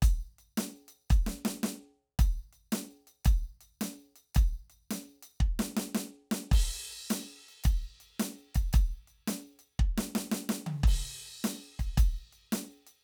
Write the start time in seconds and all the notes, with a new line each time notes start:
0.02 closed hi-hat, kick
0.39 closed hi-hat
0.58 snare, closed hi-hat
0.88 closed hi-hat
1.10 closed hi-hat, kick
1.27 snare
1.45 snare
1.64 snare
2.19 kick, closed hi-hat
2.53 closed hi-hat
2.72 snare, closed hi-hat
3.07 closed hi-hat
3.25 kick, closed hi-hat
3.61 closed hi-hat
3.81 snare, closed hi-hat
4.16 closed hi-hat
4.35 kick, closed hi-hat
4.70 closed hi-hat
4.91 snare, closed hi-hat
5.23 closed hi-hat
5.41 kick
5.60 snare
5.77 snare
5.95 snare
6.32 snare
6.52 kick, crash
7.10 closed hi-hat, snare
7.49 closed hi-hat
7.64 kick, closed hi-hat
8.01 closed hi-hat
8.20 snare, closed hi-hat
8.55 kick, closed hi-hat
8.73 kick, closed hi-hat
9.08 closed hi-hat
9.28 snare, closed hi-hat
9.59 closed hi-hat
9.80 kick
9.98 snare
10.15 snare
10.32 snare
10.49 snare
10.67 high tom
10.84 kick, crash
11.44 snare, closed hi-hat
11.80 kick, closed hi-hat
11.98 kick, closed hi-hat
12.33 closed hi-hat
12.53 snare, closed hi-hat
12.87 closed hi-hat